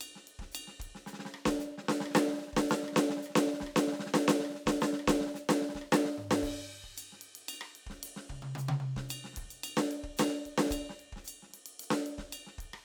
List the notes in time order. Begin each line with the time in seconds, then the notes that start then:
0.01 hi-hat pedal, ride bell
0.16 snare
0.28 ride
0.39 kick, snare
0.47 kick
0.52 hi-hat pedal, ride bell
0.68 snare
0.80 kick, ride
0.86 kick
0.95 snare
1.07 snare, hi-hat pedal
1.14 snare
1.20 snare
1.26 snare
1.34 cross-stick
1.46 kick, snare
1.51 cross-stick
1.59 snare, hi-hat pedal
1.66 snare
1.71 snare
1.78 snare
1.84 snare
1.89 snare
2.01 snare
2.06 cross-stick
2.15 snare, hi-hat pedal
2.28 snare
2.33 snare
2.41 snare
2.48 snare
2.53 kick, snare
2.57 snare
2.69 snare, hi-hat pedal
2.83 snare
2.89 cross-stick
2.93 snare
2.97 snare
3.10 snare
3.17 snare
3.23 cross-stick, hi-hat pedal
3.36 snare
3.47 snare
3.54 snare
3.61 kick, snare
3.67 cross-stick
3.77 snare, hi-hat pedal
3.88 snare
3.93 snare
4.00 snare
4.07 snare
4.14 snare
4.28 snare, hi-hat pedal
4.40 snare
4.46 cross-stick
4.50 snare
4.55 snare
4.67 kick, snare
4.81 snare, hi-hat pedal
4.93 snare
5.00 cross-stick
5.08 kick, snare
5.21 snare
5.27 snare
5.35 snare, hi-hat pedal
5.49 snare
5.62 snare
5.69 snare
5.75 kick, snare
5.82 cross-stick
5.92 snare, hi-hat pedal
6.05 snare
6.18 mid tom
6.31 snare
6.43 kick, hi-hat pedal, crash
6.54 kick
6.84 kick
6.97 hi-hat pedal, ride bell
7.13 snare
7.20 cross-stick, ride
7.36 ride
7.49 ride bell
7.54 hi-hat pedal
7.61 cross-stick
7.76 ride
7.87 kick, snare
7.92 kick
8.04 hi-hat pedal, ride
8.17 snare
8.30 kick, high tom
8.43 high tom
8.56 hi-hat pedal, high tom
8.69 high tom
8.81 high tom
8.97 kick, snare
9.10 hi-hat pedal, ride bell
9.25 snare
9.33 snare, ride
9.37 kick, snare
9.44 kick, snare
9.51 snare, ride bell
9.64 hi-hat pedal, ride bell
9.77 snare
9.92 ride
10.04 kick
10.10 kick
10.17 snare, hi-hat pedal, ride bell
10.28 snare
10.46 kick, ride
10.58 snare
10.66 snare
10.71 kick, hi-hat pedal, ride bell
10.78 kick
10.82 kick
10.90 snare
11.00 ride
11.13 kick, snare
11.25 hi-hat pedal, ride bell
11.43 snare
11.50 snare
11.53 snare, ride
11.66 ride
11.80 hi-hat pedal, ride
11.91 snare
12.07 ride
12.19 kick, snare
12.24 kick
12.33 hi-hat pedal, ride bell
12.47 snare
12.59 kick, ride
12.74 cross-stick